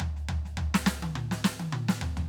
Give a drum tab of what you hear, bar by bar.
SD |-o-o-oo--oo--o--|
T1 |-------o---o----|
T2 |--------o---o---|
FT |o-o-o---------oo|